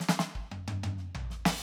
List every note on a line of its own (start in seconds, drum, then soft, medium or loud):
0.00 snare loud
0.09 snare loud
0.19 snare loud
0.35 kick medium
0.52 high tom loud
0.68 high tom loud
0.83 high tom loud
0.97 snare soft
1.15 floor tom loud
1.30 snare soft
1.45 snare loud
1.45 crash loud